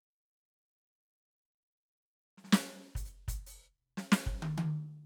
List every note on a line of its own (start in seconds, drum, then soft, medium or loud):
2.37 snare soft
2.44 snare soft
2.47 snare soft
2.52 snare loud
2.95 open hi-hat medium
2.95 kick soft
3.05 hi-hat pedal medium
3.28 open hi-hat medium
3.28 kick soft
3.46 hi-hat pedal medium
3.97 snare medium
4.12 snare loud
4.26 kick medium
4.42 closed hi-hat soft
4.42 high tom loud
4.58 closed hi-hat soft
4.58 high tom loud